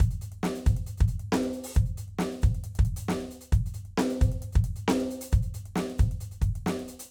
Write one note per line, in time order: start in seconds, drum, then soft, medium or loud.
0.01 closed hi-hat medium
0.01 kick loud
0.12 closed hi-hat medium
0.22 closed hi-hat medium
0.33 closed hi-hat soft
0.44 snare loud
0.56 closed hi-hat medium
0.67 closed hi-hat medium
0.67 kick loud
0.78 closed hi-hat soft
0.87 closed hi-hat medium
0.98 closed hi-hat medium
0.98 kick loud
1.09 closed hi-hat medium
1.20 closed hi-hat soft
1.33 snare loud
1.44 closed hi-hat soft
1.54 closed hi-hat medium
1.65 open hi-hat loud
1.74 kick loud
1.74 closed hi-hat medium
1.74 hi-hat pedal soft
1.87 closed hi-hat soft
1.98 closed hi-hat medium
2.09 closed hi-hat soft
2.20 snare loud
2.33 closed hi-hat soft
2.44 kick loud
2.56 closed hi-hat soft
2.65 closed hi-hat medium
2.76 kick loud
2.76 closed hi-hat medium
2.86 closed hi-hat medium
2.97 closed hi-hat loud
3.09 snare loud
3.21 closed hi-hat soft
3.32 closed hi-hat medium
3.53 kick loud
3.53 closed hi-hat medium
3.67 closed hi-hat soft
3.75 closed hi-hat medium
3.86 closed hi-hat soft
3.99 snare loud
4.11 closed hi-hat medium
4.22 closed hi-hat medium
4.22 kick loud
4.33 closed hi-hat soft
4.43 closed hi-hat medium
4.53 closed hi-hat medium
4.53 kick loud
4.65 closed hi-hat medium
4.77 closed hi-hat medium
4.89 snare loud
5.01 closed hi-hat soft
5.12 closed hi-hat medium
5.22 closed hi-hat loud
5.33 closed hi-hat medium
5.33 kick loud
5.43 closed hi-hat soft
5.55 closed hi-hat medium
5.67 closed hi-hat soft
5.77 snare loud
5.91 closed hi-hat soft
5.99 closed hi-hat medium
5.99 kick loud
6.12 closed hi-hat soft
6.21 closed hi-hat medium
6.32 closed hi-hat medium
6.43 kick loud
6.43 closed hi-hat medium
6.56 closed hi-hat soft
6.67 snare loud
6.80 closed hi-hat soft
6.89 closed hi-hat medium
7.00 closed hi-hat loud